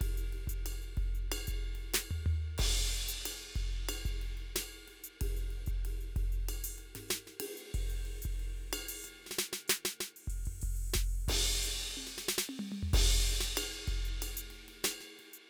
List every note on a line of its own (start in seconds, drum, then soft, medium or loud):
0.01 kick medium
0.01 ride medium
0.17 closed hi-hat medium
0.33 ride soft
0.47 kick medium
0.47 closed hi-hat loud
0.66 ride bell medium
0.82 closed hi-hat soft
0.97 kick medium
0.97 ride soft
1.15 closed hi-hat soft
1.32 ride bell loud
1.47 closed hi-hat medium
1.47 kick soft
1.75 ride soft
1.94 snare loud
1.94 hi-hat pedal medium
1.94 ride bell medium
2.11 floor tom medium
2.26 floor tom loud
2.58 kick medium
2.58 ride loud
2.76 closed hi-hat soft
2.92 ride soft
3.08 closed hi-hat loud
3.26 ride bell loud
3.41 closed hi-hat soft
3.56 kick medium
3.56 ride soft
3.72 closed hi-hat soft
3.89 ride bell loud
4.05 kick medium
4.05 closed hi-hat medium
4.22 ride soft
4.37 ride soft
4.56 snare loud
4.56 ride bell loud
4.88 ride soft
5.04 closed hi-hat loud
5.21 kick medium
5.21 ride medium
5.37 closed hi-hat medium
5.51 ride soft
5.66 kick medium
5.66 closed hi-hat medium
5.85 ride medium
6.01 closed hi-hat soft
6.16 kick medium
6.16 ride medium
6.32 closed hi-hat soft
6.49 ride bell medium
6.64 open hi-hat loud
6.78 ride soft
6.95 snare soft
6.95 high tom soft
6.95 ride medium
6.95 floor tom soft
7.09 snare loud
7.09 hi-hat pedal medium
7.27 snare soft
7.40 ride loud
7.57 closed hi-hat medium
7.74 kick medium
7.74 crash medium
7.90 closed hi-hat medium
8.05 ride bell soft
8.22 closed hi-hat medium
8.22 kick medium
8.40 ride soft
8.56 closed hi-hat soft
8.73 ride bell loud
8.88 open hi-hat loud
9.04 hi-hat pedal medium
9.04 ride medium
9.26 snare soft
9.31 snare medium
9.39 snare loud
9.53 snare medium
9.68 snare loud
9.68 hi-hat pedal medium
9.85 snare loud
10.00 snare medium
10.16 open hi-hat medium
10.28 kick soft
10.28 crash medium
10.45 kick soft
10.45 crash medium
10.62 kick soft
10.62 crash medium
10.76 open hi-hat soft
10.94 kick medium
10.94 snare loud
11.28 kick medium
11.28 ride loud
11.63 hi-hat pedal loud
11.63 crash medium
11.80 snare soft
11.97 high tom medium
12.07 snare soft
12.18 snare medium
12.28 snare loud
12.38 snare loud
12.49 high tom medium
12.59 mid tom medium
12.72 mid tom medium
12.83 floor tom medium
12.93 kick medium
12.93 ride loud
13.18 kick soft
13.41 snare medium
13.41 hi-hat pedal soft
13.57 ride bell loud
13.73 closed hi-hat soft
13.88 kick medium
13.88 ride soft
14.05 closed hi-hat medium
14.22 ride bell medium
14.37 closed hi-hat loud
14.50 ride soft
14.68 ride soft
14.84 snare loud
14.84 hi-hat pedal medium
14.84 ride bell loud
15.01 snare soft
15.19 ride soft
15.33 closed hi-hat medium